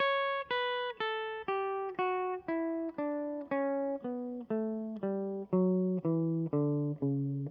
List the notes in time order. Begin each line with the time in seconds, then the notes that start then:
0.01 C#5
0.51 B4
1.01 A4
1.49 G4
1.99 F#4
2.49 E4
2.99 D4
3.52 C#4
4.05 B3
4.51 A3
5.04 G3
5.54 F#3
6.06 E3
6.54 D3
7.03 C#3